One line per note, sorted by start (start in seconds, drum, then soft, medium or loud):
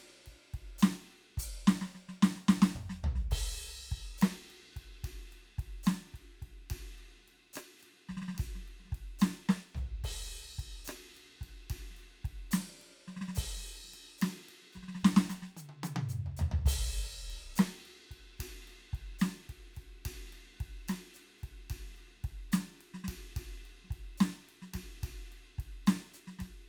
0.01 ride soft
0.11 snare soft
0.15 snare soft
0.17 snare soft
0.27 kick soft
0.27 ride medium
0.55 kick soft
0.55 ride medium
0.80 hi-hat pedal loud
0.84 snare loud
0.84 ride loud
0.94 snare soft
1.08 snare soft
1.38 kick soft
1.38 hi-hat pedal loud
1.45 kick soft
1.68 snare loud
1.82 snare medium
1.96 snare soft
2.10 snare medium
2.24 snare loud
2.37 snare medium
2.49 kick soft
2.49 snare loud
2.63 snare loud
2.76 kick soft
2.76 mid tom medium
2.81 kick soft
2.91 snare medium
3.05 kick soft
3.05 floor tom loud
3.16 snare soft
3.32 kick soft
3.32 crash loud
3.39 kick soft
3.75 snare soft
3.93 kick soft
3.93 ride soft
3.99 kick soft
4.19 hi-hat pedal medium
4.19 ride loud
4.24 snare loud
4.48 hi-hat pedal soft
4.48 ride soft
4.64 snare soft
4.69 snare soft
4.74 kick soft
4.74 hi-hat pedal soft
4.74 ride medium
5.05 kick soft
5.05 ride medium
5.10 kick soft
5.32 hi-hat pedal soft
5.32 ride soft
5.59 kick soft
5.59 ride medium
5.67 kick soft
5.84 snare loud
5.84 hi-hat pedal medium
5.84 ride medium
6.15 kick soft
6.15 ride soft
6.43 kick soft
6.43 ride soft
6.47 snare soft
6.59 snare soft
6.62 snare soft
6.70 kick soft
6.70 hi-hat pedal soft
6.70 ride loud
6.99 ride soft
7.29 ride soft
7.54 cross-stick medium
7.54 hi-hat pedal medium
7.54 ride loud
7.80 hi-hat pedal soft
7.84 ride medium
7.94 snare soft
8.10 kick soft
8.10 snare soft
8.18 snare soft
8.23 snare medium
8.29 snare medium
8.35 snare soft
8.35 ride loud
8.40 kick soft
8.40 hi-hat pedal soft
8.47 kick soft
8.56 snare soft
8.69 ride soft
8.81 snare soft
8.86 snare soft
8.89 snare soft
8.93 kick soft
8.93 ride medium
9.20 snare loud
9.20 hi-hat pedal medium
9.20 ride loud
9.50 kick soft
9.50 snare loud
9.76 kick soft
9.76 floor tom loud
9.76 hi-hat pedal soft
10.05 kick soft
10.05 crash loud
10.60 kick soft
10.60 ride medium
10.86 hi-hat pedal medium
10.86 ride loud
10.90 cross-stick medium
11.15 hi-hat pedal soft
11.15 ride medium
11.42 kick soft
11.42 snare soft
11.42 ride medium
11.71 kick soft
11.71 ride loud
11.91 snare soft
11.97 snare soft
11.97 hi-hat pedal soft
11.97 ride soft
12.01 snare soft
12.26 kick soft
12.26 ride medium
12.52 snare medium
12.52 hi-hat pedal loud
12.52 ride medium
12.79 snare soft
12.79 ride soft
12.87 snare soft
13.09 snare soft
13.17 snare soft
13.22 snare medium
13.29 snare medium
13.36 kick medium
13.36 snare soft
13.36 hi-hat pedal loud
13.36 crash loud
13.45 kick soft
13.50 kick soft
13.58 snare soft
13.68 ride medium
13.85 snare soft
13.88 snare soft
13.95 ride medium
14.19 snare medium
14.19 hi-hat pedal medium
14.19 ride loud
14.50 ride medium
14.63 snare soft
14.74 snare soft
14.74 hi-hat pedal soft
14.78 kick soft
14.84 snare soft
14.89 snare soft
14.96 snare soft
15.01 kick soft
15.01 hi-hat pedal soft
15.06 snare loud
15.18 snare loud
15.31 snare medium
15.31 hi-hat pedal medium
15.43 snare medium
15.58 hi-hat pedal medium
15.58 high tom medium
15.70 high tom medium
15.85 hi-hat pedal loud
15.85 high tom loud
15.97 high tom loud
16.10 hi-hat pedal medium
16.14 mid tom soft
16.27 mid tom medium
16.38 hi-hat pedal medium
16.38 floor tom loud
16.53 floor tom loud
16.63 floor tom soft
16.67 kick medium
16.67 hi-hat pedal loud
16.67 crash loud
16.79 kick soft
17.31 ride medium
17.57 snare loud
17.57 hi-hat pedal loud
17.57 ride loud
17.87 snare soft
17.87 ride soft
18.12 kick soft
18.12 ride medium
18.39 kick soft
18.39 hi-hat pedal soft
18.39 ride loud
18.69 hi-hat pedal soft
18.69 ride soft
18.94 kick soft
18.94 ride soft
19.20 snare loud
19.20 hi-hat pedal medium
19.20 ride loud
19.32 snare soft
19.49 kick soft
19.49 snare soft
19.49 ride medium
19.75 kick soft
19.75 hi-hat pedal soft
19.75 ride medium
20.06 kick soft
20.06 ride loud
20.12 kick soft
20.34 ride medium
20.61 kick soft
20.61 ride medium
20.89 snare medium
20.89 hi-hat pedal medium
20.89 ride loud
21.15 snare soft
21.15 hi-hat pedal soft
21.15 ride medium
21.39 hi-hat pedal soft
21.44 kick soft
21.44 ride medium
21.71 kick soft
21.71 ride loud
21.77 kick soft
21.98 ride soft
22.25 kick soft
22.25 ride medium
22.53 snare loud
22.53 hi-hat pedal loud
22.53 ride medium
22.82 ride medium
22.95 snare medium
23.05 kick soft
23.05 snare medium
23.05 ride loud
23.37 kick soft
23.37 ride loud
23.66 ride soft
23.85 snare soft
23.91 kick soft
23.91 ride medium
24.19 snare loud
24.19 hi-hat pedal medium
24.19 ride medium
24.50 ride medium
24.63 snare soft
24.75 kick soft
24.75 snare medium
24.75 ride loud
25.03 kick soft
25.03 hi-hat pedal soft
25.03 ride loud
25.10 kick soft
25.33 ride soft
25.59 kick soft
25.59 ride medium
25.88 snare loud
25.88 hi-hat pedal medium
25.88 ride medium
26.15 hi-hat pedal medium
26.15 ride medium
26.28 snare soft
26.40 kick soft
26.40 snare medium
26.40 ride medium